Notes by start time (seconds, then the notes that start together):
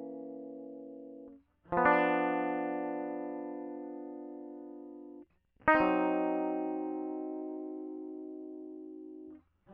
1.73 F3
1.78 B3
1.86 D4
5.68 D#4
5.75 C4
5.81 F#3